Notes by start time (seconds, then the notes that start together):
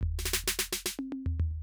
0.05 kick, floor tom
0.19 snare
0.25 snare
0.33 snare
0.44 kick, snare
0.59 snare
0.72 snare
0.86 snare
0.99 high tom
1.12 high tom
1.26 floor tom
1.40 floor tom
1.51 kick